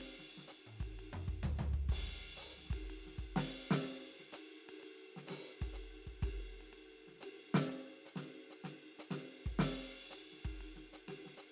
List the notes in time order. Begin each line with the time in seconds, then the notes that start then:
0.01 ride
0.19 snare
0.38 snare
0.48 hi-hat pedal
0.52 ride
0.67 high tom
0.81 kick, ride
0.92 hi-hat pedal
0.99 ride
1.13 mid tom
1.28 kick
1.43 floor tom, hi-hat pedal
1.59 floor tom
1.74 kick
1.88 kick, hi-hat pedal, ride
2.08 snare
2.37 hi-hat pedal
2.43 ride
2.58 snare
2.65 snare
2.71 kick, ride
2.82 hi-hat pedal
2.90 ride
3.07 snare
3.19 kick
3.36 snare, hi-hat pedal, ride
3.71 snare, ride
3.83 hi-hat pedal, ride
4.19 snare
4.33 hi-hat pedal, ride
4.69 ride
4.79 hi-hat pedal
4.83 ride
5.17 snare
5.28 snare, hi-hat pedal, ride
5.62 open hi-hat, kick, ride
5.73 hi-hat pedal, ride
6.07 kick
6.23 kick, open hi-hat, ride
6.61 ride
6.73 ride
7.08 snare
7.12 snare
7.15 snare
7.21 hi-hat pedal, ride
7.54 snare, ride
7.70 ride
8.06 hi-hat pedal
8.16 snare, ride
8.51 hi-hat pedal
8.64 snare, ride
8.99 hi-hat pedal
9.11 snare, ride
9.46 kick
9.59 snare, ride
10.11 hi-hat pedal, ride
10.32 snare
10.45 kick, ride
10.54 hi-hat pedal
10.61 ride
10.76 snare
10.93 hi-hat pedal
11.09 snare, ride
11.26 snare
11.38 hi-hat pedal